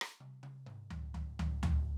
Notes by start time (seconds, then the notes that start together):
0.00 cross-stick
0.23 high tom
0.45 high tom
0.69 mid tom
0.93 floor tom
1.16 floor tom
1.41 floor tom
1.65 floor tom